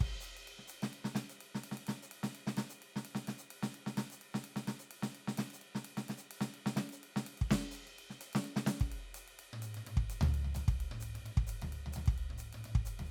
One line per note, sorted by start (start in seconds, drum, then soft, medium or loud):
0.01 kick medium
0.01 ride medium
0.21 hi-hat pedal medium
0.25 ride soft
0.37 ride medium
0.48 ride medium
0.59 snare soft
0.68 hi-hat pedal medium
0.68 ride medium
0.83 snare medium
0.83 ride soft
0.94 ride medium
1.05 snare medium
1.15 snare medium
1.15 ride medium
1.30 hi-hat pedal medium
1.30 ride medium
1.41 ride medium
1.55 snare medium
1.64 ride medium
1.72 snare soft
1.78 ride medium
1.87 snare medium
1.87 ride medium
2.03 hi-hat pedal medium
2.12 ride medium
2.24 snare medium
2.24 ride medium
2.35 ride medium
2.47 snare medium
2.57 snare medium
2.57 ride medium
2.70 hi-hat pedal medium
2.70 ride medium
2.83 ride medium
2.89 hi-hat pedal soft
2.96 snare medium
3.05 ride medium
3.15 snare medium
3.15 ride soft
3.28 snare medium
3.39 hi-hat pedal medium
3.51 ride medium
3.58 hi-hat pedal soft
3.63 snare medium
3.63 ride soft
3.75 ride medium
3.87 snare medium
3.98 snare medium
3.98 ride medium
4.11 hi-hat pedal medium
4.11 ride medium
4.22 ride medium
4.32 snare medium
4.32 hi-hat pedal soft
4.45 ride medium
4.56 snare medium
4.56 ride soft
4.68 snare medium
4.68 ride medium
4.80 hi-hat pedal medium
4.91 ride medium
4.99 hi-hat pedal soft
5.03 snare medium
5.03 ride medium
5.15 ride medium
5.28 snare medium
5.38 snare medium
5.38 ride medium
5.51 hi-hat pedal medium
5.51 ride soft
5.62 ride soft
5.75 snare medium
5.85 ride medium
5.98 snare medium
5.98 ride soft
6.09 snare medium
6.09 ride medium
6.18 hi-hat pedal medium
6.31 ride medium
6.41 snare medium
6.41 ride medium
6.54 ride soft
6.66 snare medium
6.77 snare medium
6.77 ride medium
6.90 hi-hat pedal medium
6.90 ride medium
7.04 ride medium
7.17 snare medium
7.27 ride medium
7.38 kick medium
7.38 ride soft
7.50 snare loud
7.50 ride medium
7.72 hi-hat pedal medium
7.72 ride soft
7.88 ride soft
7.99 ride medium
8.10 snare soft
8.21 hi-hat pedal medium
8.21 ride medium
8.34 snare medium
8.34 ride medium
8.45 ride soft
8.57 snare medium
8.67 snare medium
8.67 hi-hat pedal medium
8.67 ride medium
8.81 kick medium
8.81 ride medium
8.91 hi-hat pedal soft
8.91 ride medium
9.15 hi-hat pedal medium
9.15 ride medium
9.28 ride soft
9.40 ride medium
9.54 high tom medium
9.62 hi-hat pedal medium
9.62 ride medium
9.75 high tom medium
9.75 ride medium
9.87 high tom medium
9.87 ride medium
9.97 kick medium
10.10 hi-hat pedal medium
10.10 ride medium
10.21 floor tom loud
10.21 ride medium
10.35 ride medium
10.45 floor tom soft
10.55 floor tom medium
10.55 hi-hat pedal medium
10.55 ride medium
10.68 kick medium
10.68 ride soft
10.81 ride medium
10.92 high tom medium
11.01 hi-hat pedal medium
11.01 ride medium
11.16 high tom soft
11.16 ride medium
11.26 high tom medium
11.26 ride medium
11.38 kick medium
11.47 hi-hat pedal medium
11.47 ride medium
11.62 floor tom medium
11.62 ride soft
11.73 ride medium
11.87 floor tom medium
11.93 floor tom medium
11.93 hi-hat pedal medium
11.93 ride medium
12.07 kick medium
12.07 ride soft
12.13 hi-hat pedal soft
12.18 ride soft
12.31 high tom medium
12.38 hi-hat pedal medium
12.38 ride medium
12.53 high tom medium
12.53 ride medium
12.59 hi-hat pedal soft
12.65 high tom medium
12.65 ride medium
12.75 kick medium
12.86 hi-hat pedal medium
12.86 ride medium
13.00 floor tom medium
13.00 ride soft
13.06 hi-hat pedal soft